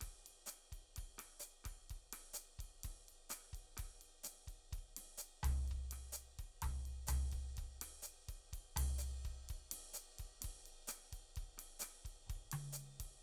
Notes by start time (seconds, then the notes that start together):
0.01 kick, cross-stick, ride
0.08 kick
0.27 ride
0.47 cross-stick, snare, hi-hat pedal, ride
0.72 kick, ride
0.97 kick, cross-stick, ride
1.03 kick
1.19 cross-stick, ride
1.40 hi-hat pedal
1.44 ride
1.65 kick, cross-stick, ride
1.71 kick
1.90 kick, ride
1.96 kick
2.13 cross-stick, ride
2.34 hi-hat pedal, ride
2.59 kick, ride
2.64 kick
2.84 kick, snare, ride
2.90 kick
3.09 ride
3.30 cross-stick, hi-hat pedal, ride
3.53 kick, ride
3.77 kick, cross-stick, snare, ride
3.85 kick
4.02 ride
4.24 snare, hi-hat pedal, ride
4.48 kick, ride
4.73 kick, ride
4.78 kick
4.97 snare, ride
5.18 hi-hat pedal, ride
5.44 kick, floor tom, ride
5.51 kick
5.68 kick, ride
5.76 kick
5.92 cross-stick, ride
6.13 hi-hat pedal, ride
6.39 kick, ride
6.44 kick
6.63 kick, floor tom, ride
6.69 kick
6.86 ride
7.07 floor tom, hi-hat pedal, ride
7.32 kick, ride
7.38 kick, snare
7.57 kick, ride
7.64 kick
7.82 cross-stick, snare, ride
8.03 hi-hat pedal, ride
8.29 kick, ride
8.53 kick, ride
8.58 kick
8.77 floor tom, ride
8.99 hi-hat pedal, ride
9.11 snare
9.25 kick, ride
9.30 kick
9.49 kick, ride
9.55 kick
9.71 snare, ride
9.94 hi-hat pedal, ride
10.19 kick, ride
10.25 kick
10.41 kick, snare, ride
10.50 kick
10.66 ride
10.88 cross-stick, snare, hi-hat pedal, ride
11.13 kick, ride
11.36 kick, ride
11.43 kick
11.58 cross-stick, snare, ride
11.80 cross-stick, hi-hat pedal, ride
12.05 kick, ride
12.27 kick, mid tom, ride
12.35 kick
12.52 high tom, ride
12.73 hi-hat pedal
12.77 ride
13.00 kick, ride
13.05 kick